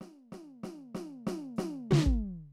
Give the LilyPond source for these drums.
\new DrumStaff \drummode { \time 4/4 \tempo 4 = 95 <sn tomfh>8 <sn tomfh>8 <sn tomfh>8 <sn tomfh>8 <sn tomfh>8 <hhp sn tomfh>8 <tomfh sn>16 bd8. | }